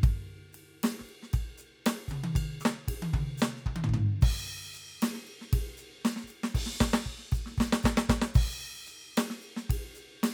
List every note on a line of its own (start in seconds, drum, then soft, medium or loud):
0.01 kick loud
0.01 hi-hat pedal soft
0.01 ride medium
0.52 hi-hat pedal soft
0.52 ride medium
0.83 snare loud
0.83 ride loud
0.99 kick soft
0.99 snare soft
1.05 hi-hat pedal soft
1.05 ride soft
1.22 snare soft
1.33 kick medium
1.33 ride bell medium
1.57 hi-hat pedal medium
1.57 ride soft
1.86 snare loud
1.86 ride loud
2.08 kick soft
2.08 hi-hat pedal medium
2.08 mid tom loud
2.23 high tom loud
2.35 kick medium
2.35 ride bell loud
2.59 kick soft
2.59 cross-stick medium
2.59 hi-hat pedal medium
2.65 snare loud
2.88 kick medium
2.88 ride loud
3.02 high tom loud
3.13 kick medium
3.13 mid tom loud
3.37 hi-hat pedal medium
3.37 ride bell medium
3.42 snare loud
3.56 snare soft
3.66 kick medium
3.66 mid tom medium
3.76 high tom loud
3.84 floor tom loud
3.89 kick medium
3.94 floor tom loud
4.21 kick loud
4.21 hi-hat pedal soft
4.21 crash loud
4.73 hi-hat pedal medium
5.02 snare loud
5.02 ride loud
5.14 snare soft
5.17 snare soft
5.19 snare soft
5.27 ride soft
5.41 snare soft
5.53 kick loud
5.53 ride loud
5.77 hi-hat pedal medium
5.77 ride soft
6.05 snare loud
6.05 ride bell loud
6.16 snare medium
6.20 kick soft
6.20 snare soft
6.27 hi-hat pedal medium
6.27 ride soft
6.43 snare loud
6.54 kick medium
6.54 ride loud
6.66 snare medium
6.74 snare soft
6.80 kick medium
6.80 snare loud
6.80 hi-hat pedal medium
6.93 snare loud
7.06 kick soft
7.06 snare soft
7.18 snare soft
7.23 snare soft
7.25 snare soft
7.28 snare soft
7.28 ride medium
7.32 kick medium
7.32 hi-hat pedal medium
7.46 snare soft
7.51 snare soft
7.57 kick medium
7.57 snare loud
7.57 hi-hat pedal soft
7.72 snare loud
7.83 kick medium
7.83 snare loud
7.83 hi-hat pedal medium
7.97 snare loud
8.09 kick medium
8.09 snare loud
8.22 snare loud
8.34 kick loud
8.34 hi-hat pedal medium
8.34 crash loud
8.86 hi-hat pedal medium
8.86 ride soft
9.17 snare loud
9.17 ride loud
9.30 snare medium
9.41 hi-hat pedal soft
9.41 ride soft
9.56 snare medium
9.69 kick medium
9.69 ride loud
9.95 hi-hat pedal medium
9.95 ride soft
10.23 snare loud
10.23 ride loud